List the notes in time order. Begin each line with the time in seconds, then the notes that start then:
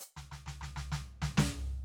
0.01 hi-hat pedal
0.17 snare, floor tom
0.32 snare, floor tom
0.47 snare, floor tom
0.62 snare, floor tom
0.77 snare, floor tom
0.92 snare, floor tom
1.22 snare, floor tom
1.38 snare, floor tom